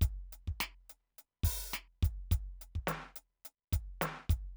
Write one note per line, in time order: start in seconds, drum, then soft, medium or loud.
0.01 closed hi-hat loud
0.01 kick medium
0.32 closed hi-hat medium
0.47 kick soft
0.60 snare loud
0.60 closed hi-hat loud
0.89 closed hi-hat medium
1.18 closed hi-hat medium
1.43 kick medium
1.43 open hi-hat loud
1.71 snare medium
1.71 closed hi-hat loud
1.71 hi-hat pedal loud
2.03 kick medium
2.03 closed hi-hat medium
2.31 closed hi-hat loud
2.31 kick medium
2.61 closed hi-hat medium
2.75 kick soft
2.87 snare medium
2.87 closed hi-hat loud
3.16 closed hi-hat loud
3.45 closed hi-hat medium
3.73 kick medium
3.73 closed hi-hat loud
4.01 snare medium
4.01 closed hi-hat loud
4.29 kick medium
4.29 closed hi-hat loud